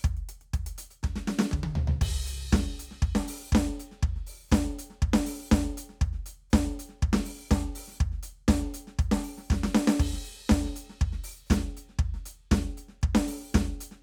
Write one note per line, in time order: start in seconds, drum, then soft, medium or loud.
0.01 kick loud
0.01 hi-hat pedal soft
0.05 closed hi-hat medium
0.17 closed hi-hat soft
0.29 closed hi-hat medium
0.41 closed hi-hat soft
0.53 kick loud
0.53 closed hi-hat medium
0.66 closed hi-hat loud
0.76 closed hi-hat loud
0.76 kick soft
0.90 closed hi-hat medium
1.03 kick loud
1.03 snare medium
1.16 snare medium
1.27 snare loud
1.39 snare loud
1.51 kick loud
1.51 high tom loud
1.63 high tom loud
1.75 floor tom loud
1.87 floor tom loud
2.01 kick loud
2.01 crash loud
2.27 closed hi-hat medium
2.50 kick loud
2.50 snare loud
2.50 hi-hat pedal soft
2.60 snare soft
2.79 closed hi-hat loud
2.91 snare soft
3.02 kick loud
3.02 closed hi-hat soft
3.15 snare loud
3.23 snare soft
3.28 open hi-hat loud
3.49 kick loud
3.49 hi-hat pedal soft
3.55 snare loud
3.55 closed hi-hat soft
3.79 closed hi-hat medium
3.91 snare soft
4.03 kick loud
4.03 closed hi-hat soft
4.16 snare soft
4.27 open hi-hat medium
4.48 kick loud
4.48 hi-hat pedal soft
4.52 closed hi-hat medium
4.52 snare loud
4.69 snare soft
4.79 closed hi-hat loud
4.90 snare soft
5.02 kick loud
5.02 closed hi-hat soft
5.13 snare loud
5.26 open hi-hat loud
5.48 kick loud
5.48 snare loud
5.48 hi-hat pedal soft
5.54 closed hi-hat soft
5.58 snare soft
5.67 snare soft
5.70 snare soft
5.77 closed hi-hat loud
5.89 snare soft
5.94 snare soft
6.01 closed hi-hat soft
6.01 kick loud
6.13 snare soft
6.26 open hi-hat medium
6.50 kick loud
6.50 snare loud
6.50 hi-hat pedal soft
6.55 closed hi-hat soft
6.79 closed hi-hat loud
6.89 snare soft
7.02 kick loud
7.02 closed hi-hat soft
7.13 snare loud
7.19 snare soft
7.25 open hi-hat loud
7.48 kick loud
7.48 snare loud
7.48 closed hi-hat medium
7.48 hi-hat pedal soft
7.58 snare soft
7.70 snare soft
7.75 open hi-hat loud
7.87 snare soft
7.90 snare soft
7.92 snare soft
7.92 hi-hat pedal soft
8.00 kick loud
8.00 closed hi-hat soft
8.12 snare soft
8.15 snare soft
8.23 closed hi-hat loud
8.48 kick loud
8.48 snare loud
8.48 closed hi-hat medium
8.74 closed hi-hat loud
8.87 snare soft
8.99 closed hi-hat soft
8.99 kick loud
9.11 snare loud
9.18 snare soft
9.24 open hi-hat medium
9.38 snare soft
9.46 hi-hat pedal soft
9.50 kick loud
9.50 snare medium
9.63 snare loud
9.75 snare loud
9.87 snare loud
9.99 kick loud
9.99 crash loud
10.13 snare soft
10.20 kick soft
10.24 closed hi-hat medium
10.49 kick loud
10.49 snare loud
10.65 snare soft
10.76 closed hi-hat medium
10.89 snare soft
11.00 kick loud
11.00 closed hi-hat soft
11.12 snare soft
11.24 open hi-hat loud
11.46 kick loud
11.46 hi-hat pedal soft
11.51 closed hi-hat medium
11.51 snare loud
11.58 snare soft
11.77 closed hi-hat medium
11.89 snare soft
11.99 kick loud
11.99 closed hi-hat soft
12.14 snare soft
12.25 closed hi-hat loud
12.51 kick loud
12.51 snare loud
12.51 closed hi-hat soft
12.77 closed hi-hat medium
12.88 snare soft
13.01 kick loud
13.01 closed hi-hat soft
13.15 snare loud
13.28 open hi-hat loud
13.52 kick loud
13.52 snare loud
13.52 hi-hat pedal soft
13.56 closed hi-hat soft
13.62 snare soft
13.80 closed hi-hat loud
13.91 snare soft